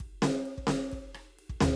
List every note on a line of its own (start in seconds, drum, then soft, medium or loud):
0.00 kick soft
0.00 ride soft
0.22 snare loud
0.22 ride soft
0.46 ride soft
0.58 kick soft
0.67 snare loud
0.67 ride medium
0.92 kick soft
0.92 ride soft
1.15 cross-stick medium
1.15 ride soft
1.25 cross-stick soft
1.39 ride medium
1.49 kick medium
1.61 snare loud
1.61 floor tom loud